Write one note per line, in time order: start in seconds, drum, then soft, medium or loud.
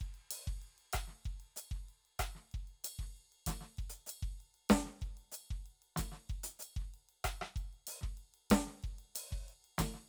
0.01 kick soft
0.01 ride soft
0.15 ride soft
0.31 hi-hat pedal medium
0.31 ride bell medium
0.47 kick medium
0.47 snare soft
0.62 ride soft
0.79 ride soft
0.93 kick soft
0.93 cross-stick medium
0.93 hi-hat pedal medium
0.93 ride bell medium
1.08 snare soft
1.25 kick soft
1.25 ride soft
1.41 ride soft
1.57 hi-hat pedal loud
1.57 ride bell medium
1.72 kick soft
1.72 snare soft
1.89 ride soft
2.06 ride soft
2.20 kick soft
2.20 cross-stick medium
2.20 hi-hat pedal medium
2.20 ride bell medium
2.36 snare soft
2.52 kick soft
2.52 ride soft
2.68 ride soft
2.85 hi-hat pedal medium
2.85 ride bell medium
2.99 kick soft
2.99 snare soft
3.17 ride soft
3.33 ride soft
3.47 kick soft
3.47 snare medium
3.47 hi-hat pedal medium
3.47 ride bell medium
3.61 snare soft
3.78 kick soft
3.78 ride soft
3.90 closed hi-hat medium
3.94 ride soft
4.07 hi-hat pedal medium
4.07 ride bell medium
4.23 kick medium
4.41 ride soft
4.55 ride soft
4.70 kick soft
4.70 snare medium
4.70 hi-hat pedal medium
4.70 ride bell medium
4.86 snare soft
5.02 kick soft
5.02 ride soft
5.18 ride soft
5.32 hi-hat pedal medium
5.32 ride bell medium
5.51 kick soft
5.51 snare soft
5.66 ride soft
5.83 ride soft
5.97 kick soft
5.97 snare medium
5.97 hi-hat pedal medium
5.97 ride bell medium
6.12 snare soft
6.30 kick soft
6.30 ride soft
6.44 closed hi-hat loud
6.44 ride soft
6.60 hi-hat pedal medium
6.60 ride bell medium
6.77 kick medium
6.77 snare soft
6.94 ride soft
7.09 ride soft
7.25 kick soft
7.25 cross-stick medium
7.25 hi-hat pedal medium
7.25 ride bell medium
7.42 cross-stick medium
7.56 kick medium
7.56 ride bell soft
7.73 ride soft
7.87 hi-hat pedal loud
7.87 ride bell medium
8.02 kick soft
8.02 snare soft
8.18 ride soft
8.35 ride soft
8.51 kick soft
8.51 snare medium
8.51 hi-hat pedal medium
8.51 ride bell medium
8.67 snare soft
8.83 kick soft
8.83 ride soft
8.99 ride soft
9.16 hi-hat pedal medium
9.16 ride bell medium
9.31 kick soft
9.31 snare soft
9.49 ride soft
9.65 ride soft
9.79 kick soft
9.79 snare medium
9.79 hi-hat pedal medium
9.79 ride bell medium
9.94 snare soft